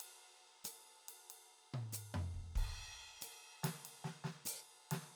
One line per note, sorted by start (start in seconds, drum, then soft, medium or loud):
0.01 ride medium
0.65 hi-hat pedal loud
0.65 ride medium
1.09 ride medium
1.31 ride medium
1.74 mid tom medium
1.93 hi-hat pedal loud
1.93 ride medium
2.15 floor tom medium
2.35 kick soft
2.56 kick medium
2.56 ride medium
3.22 hi-hat pedal medium
3.22 ride medium
3.64 snare medium
3.64 ride loud
3.86 ride medium
4.05 snare medium
4.25 snare medium
4.46 hi-hat pedal loud
4.46 ride loud
4.92 snare medium
4.92 ride medium